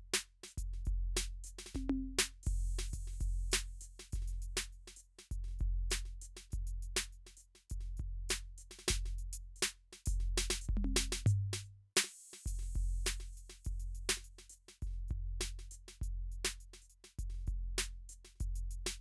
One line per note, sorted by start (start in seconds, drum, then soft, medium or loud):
0.14 snare loud
0.43 snare soft
0.48 hi-hat pedal medium
0.58 kick soft
0.58 closed hi-hat medium
0.73 snare soft
0.85 kick soft
0.85 closed hi-hat soft
0.96 kick soft
1.17 closed hi-hat loud
1.17 snare loud
1.44 closed hi-hat medium
1.44 hi-hat pedal medium
1.59 snare soft
1.66 snare soft
1.75 kick soft
1.75 snare soft
1.75 high tom medium
1.89 high tom loud
2.19 snare loud
2.43 kick medium
2.43 hi-hat pedal medium
2.43 crash medium
2.79 snare medium
2.93 closed hi-hat medium
2.93 kick soft
3.07 snare soft
3.13 snare soft
3.20 closed hi-hat medium
3.20 kick soft
3.20 snare soft
3.52 closed hi-hat medium
3.52 snare loud
3.81 closed hi-hat soft
3.81 hi-hat pedal medium
3.99 snare soft
4.12 closed hi-hat medium
4.12 kick soft
4.12 snare soft
4.22 kick soft
4.22 snare soft
4.27 closed hi-hat medium
4.27 snare soft
4.33 snare soft
4.42 closed hi-hat medium
4.57 snare medium
4.72 closed hi-hat soft
4.87 snare soft
4.96 hi-hat pedal medium
5.02 closed hi-hat soft
5.19 snare soft
5.31 closed hi-hat soft
5.31 kick soft
5.44 snare soft
5.48 snare soft
5.51 snare soft
5.59 kick soft
5.59 closed hi-hat soft
5.70 kick soft
5.91 closed hi-hat loud
5.91 snare medium
6.05 snare soft
6.22 hi-hat pedal medium
6.37 snare soft
6.50 closed hi-hat medium
6.50 kick soft
6.50 snare soft
6.62 kick soft
6.67 closed hi-hat medium
6.82 closed hi-hat medium
6.96 snare medium
7.12 closed hi-hat soft
7.26 snare soft
7.37 hi-hat pedal medium
7.41 closed hi-hat soft
7.55 snare soft
7.70 closed hi-hat medium
7.70 kick soft
7.80 snare soft
7.86 snare soft
7.97 kick soft
7.97 closed hi-hat soft
8.29 closed hi-hat medium
8.29 snare medium
8.58 hi-hat pedal medium
8.71 snare soft
8.79 snare soft
8.87 kick soft
8.87 snare soft
8.87 snare loud
8.96 kick soft
9.05 snare soft
9.18 closed hi-hat medium
9.33 closed hi-hat loud
9.56 hi-hat pedal medium
9.62 snare loud
9.93 snare soft
10.05 open hi-hat loud
10.05 kick medium
10.05 hi-hat pedal soft
10.14 kick soft
10.17 kick soft
10.17 snare soft
10.37 snare loud
10.50 snare loud
10.61 hi-hat pedal medium
10.69 kick medium
10.75 kick soft
10.75 mid tom medium
10.78 kick soft
10.84 closed hi-hat soft
10.84 high tom medium
10.96 snare loud
11.12 snare medium
11.26 hi-hat pedal medium
11.26 floor tom loud
11.53 snare medium
11.63 hi-hat pedal soft
11.96 snare loud
11.96 crash medium
12.04 snare soft
12.33 snare soft
12.43 kick soft
12.43 hi-hat pedal soft
12.47 closed hi-hat medium
12.59 snare soft
12.62 snare soft
12.75 kick soft
12.75 closed hi-hat soft
12.82 kick soft
13.06 closed hi-hat medium
13.06 snare medium
13.20 snare soft
13.33 hi-hat pedal soft
13.37 closed hi-hat soft
13.50 snare soft
13.65 closed hi-hat medium
13.65 kick soft
13.72 kick soft
13.80 closed hi-hat soft
13.95 closed hi-hat medium
14.09 snare loud
14.17 snare soft
14.24 closed hi-hat soft
14.38 snare soft
14.50 hi-hat pedal medium
14.54 closed hi-hat soft
14.68 snare soft
14.82 kick soft
14.82 closed hi-hat soft
14.87 snare soft
14.90 snare soft
14.93 snare soft
15.08 kick soft
15.08 closed hi-hat soft
15.20 kick soft
15.41 closed hi-hat medium
15.41 snare medium
15.59 snare soft
15.71 hi-hat pedal medium
15.88 snare soft
16.01 closed hi-hat medium
16.01 kick soft
16.01 snare soft
16.32 closed hi-hat soft
16.45 snare medium
16.60 closed hi-hat soft
16.73 snare soft
16.82 hi-hat pedal soft
16.90 closed hi-hat soft
17.04 snare soft
17.19 closed hi-hat medium
17.19 kick soft
17.30 snare soft
17.34 snare soft
17.38 snare soft
17.41 snare soft
17.47 kick soft
17.47 closed hi-hat soft
17.78 open hi-hat medium
17.78 snare medium
18.09 hi-hat pedal medium
18.09 open hi-hat soft
18.25 snare soft
18.36 snare soft
18.40 closed hi-hat medium
18.40 kick soft
18.55 closed hi-hat medium
18.71 closed hi-hat medium
18.86 snare medium